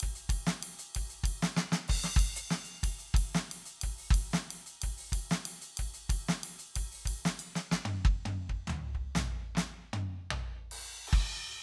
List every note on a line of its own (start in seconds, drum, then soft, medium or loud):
0.01 kick medium
0.01 ride loud
0.16 closed hi-hat medium
0.30 kick medium
0.30 ride loud
0.47 snare loud
0.47 hi-hat pedal medium
0.64 ride loud
0.80 closed hi-hat medium
0.96 kick medium
0.96 ride loud
1.10 closed hi-hat medium
1.24 kick medium
1.24 ride loud
1.42 snare loud
1.42 hi-hat pedal medium
1.57 snare loud
1.73 snare loud
1.89 kick loud
1.89 crash loud
2.05 snare medium
2.17 kick loud
2.17 ride loud
2.37 open hi-hat loud
2.37 hi-hat pedal medium
2.51 snare loud
2.65 closed hi-hat medium
2.84 kick medium
2.84 ride loud
2.99 closed hi-hat medium
3.15 kick loud
3.15 ride loud
3.34 snare loud
3.34 hi-hat pedal medium
3.52 ride loud
3.66 closed hi-hat medium
3.82 kick medium
3.82 ride loud
3.99 open hi-hat medium
4.11 kick loud
4.11 ride loud
4.31 snare loud
4.31 hi-hat pedal medium
4.51 ride loud
4.67 closed hi-hat medium
4.83 kick medium
4.83 ride loud
4.98 open hi-hat medium
5.13 kick medium
5.13 ride loud
5.30 snare loud
5.30 hi-hat pedal medium
5.46 ride loud
5.62 closed hi-hat medium
5.78 kick medium
5.78 ride loud
5.95 open hi-hat medium
6.10 kick medium
6.10 ride loud
6.29 snare loud
6.29 hi-hat pedal medium
6.44 ride loud
6.60 closed hi-hat medium
6.77 kick medium
6.77 ride loud
6.92 open hi-hat medium
7.06 kick medium
7.06 ride loud
7.18 hi-hat pedal soft
7.26 snare loud
7.40 ride bell medium
7.56 snare loud
7.72 kick soft
7.72 snare loud
7.86 high tom loud
8.06 kick loud
8.26 high tom loud
8.50 kick medium
8.68 mid tom loud
8.70 mid tom loud
8.96 kick medium
9.16 snare loud
9.16 floor tom loud
9.56 cross-stick medium
9.56 snare loud
9.94 high tom loud
10.31 floor tom loud
10.72 crash medium
11.08 ride loud
11.14 kick loud
11.37 mid tom soft
11.42 mid tom soft